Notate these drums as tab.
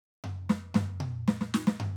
SD |----o-o---oooo--|
T2 |--------o-------|
FT |--o---o-------o-|